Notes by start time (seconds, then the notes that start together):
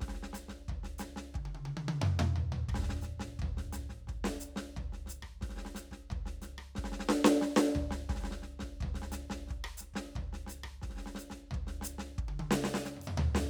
0.01 kick, snare
0.09 snare
0.14 snare
0.23 snare
0.33 snare, hi-hat pedal
0.49 kick, snare
0.69 kick, floor tom
0.84 snare
0.99 snare, hi-hat pedal
1.16 snare
1.35 kick, high tom
1.46 high tom
1.55 high tom
1.66 high tom
1.77 high tom
1.89 high tom
2.02 mid tom
2.20 mid tom
2.36 floor tom
2.52 floor tom
2.69 kick, cross-stick
2.75 snare
2.79 snare
2.83 snare
2.90 snare
2.96 snare
3.02 snare, hi-hat pedal
3.20 kick, snare
3.39 kick, floor tom
3.57 snare
3.73 snare, hi-hat pedal
3.90 kick, snare
4.08 kick, snare
4.24 snare
4.40 snare, hi-hat pedal
4.56 kick, snare
4.77 kick, floor tom
4.93 snare
5.06 snare, hi-hat pedal
5.23 kick, cross-stick
5.41 kick, snare
5.50 snare
5.55 snare
5.58 snare
5.75 snare, hi-hat pedal
5.91 kick, snare
6.11 kick, floor tom
6.26 snare
6.42 snare, hi-hat pedal
6.58 cross-stick
6.76 kick, snare
6.84 snare
6.92 snare
7.00 snare
7.09 snare
7.25 snare
7.42 snare
7.57 snare
7.75 kick, floor tom
7.91 snare
8.10 kick, snare
8.15 snare
8.21 kick, snare
8.24 snare
8.31 snare
8.43 snare
8.60 kick, snare
8.81 kick, floor tom
8.95 snare
9.02 snare
9.12 snare, hi-hat pedal
9.30 kick, snare
9.48 kick, snare
9.64 cross-stick
9.78 snare, hi-hat pedal
9.94 kick, snare
10.16 kick, floor tom
10.33 snare
10.47 snare, hi-hat pedal
10.64 kick, cross-stick
10.82 kick, snare
10.90 snare
10.95 snare
10.97 snare
11.06 snare
11.15 snare
11.19 hi-hat pedal
11.30 kick, snare
11.51 kick, floor tom
11.67 snare
11.82 snare, hi-hat pedal
11.99 snare
12.18 kick
12.29 kick, high tom
12.40 high tom
12.51 snare
12.64 snare
12.74 snare
12.85 snare, hi-hat pedal
12.97 mid tom
13.02 hi-hat pedal, ride
13.08 mid tom
13.18 floor tom
13.35 snare